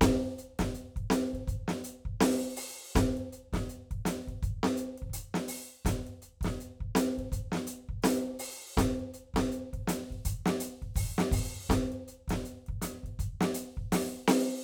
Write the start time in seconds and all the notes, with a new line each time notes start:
0.01 open hi-hat, kick, snare, hi-hat pedal
0.26 closed hi-hat
0.39 closed hi-hat
0.59 kick, snare, closed hi-hat
0.75 closed hi-hat
0.96 kick, closed hi-hat
1.10 closed hi-hat, snare
1.33 kick, closed hi-hat
1.48 closed hi-hat, kick
1.68 snare, closed hi-hat
1.84 closed hi-hat
2.05 kick
2.21 open hi-hat, snare
2.57 open hi-hat
2.95 open hi-hat, kick, snare, hi-hat pedal
3.17 closed hi-hat
3.33 closed hi-hat
3.53 kick, snare, closed hi-hat
3.70 closed hi-hat
3.91 kick, closed hi-hat
4.06 closed hi-hat, snare
4.28 kick, closed hi-hat
4.43 closed hi-hat, kick
4.63 snare
4.77 closed hi-hat
4.98 closed hi-hat
5.02 kick
5.10 closed hi-hat, kick
5.34 snare
5.48 open hi-hat
5.85 closed hi-hat, kick, snare, hi-hat pedal
6.07 closed hi-hat
6.22 closed hi-hat
6.41 kick, snare, closed hi-hat
6.61 closed hi-hat
6.66 snare
6.81 kick
6.95 closed hi-hat, snare
7.18 kick, closed hi-hat
7.32 closed hi-hat, kick
7.52 snare
7.56 snare
7.67 closed hi-hat
7.88 kick, closed hi-hat
8.03 open hi-hat, snare, hi-hat pedal
8.32 kick
8.39 open hi-hat
8.77 open hi-hat, kick, snare, hi-hat pedal
9.00 closed hi-hat
9.14 closed hi-hat
9.34 kick, snare, closed hi-hat
9.52 closed hi-hat
9.73 kick, closed hi-hat
9.88 closed hi-hat, snare
10.11 kick, closed hi-hat
10.25 closed hi-hat, kick
10.46 snare
10.60 closed hi-hat
10.82 kick, closed hi-hat
10.95 open hi-hat, kick, hi-hat pedal
11.18 snare
11.32 open hi-hat, kick
11.70 open hi-hat, kick, snare, hi-hat pedal
11.92 closed hi-hat
12.08 closed hi-hat
12.28 kick, snare, closed hi-hat
12.45 closed hi-hat
12.67 kick, closed hi-hat
12.82 closed hi-hat, snare
13.04 kick, closed hi-hat
13.19 closed hi-hat, kick
13.41 snare
13.55 closed hi-hat
13.76 kick, closed hi-hat
13.92 open hi-hat, snare
14.24 kick
14.28 open hi-hat, snare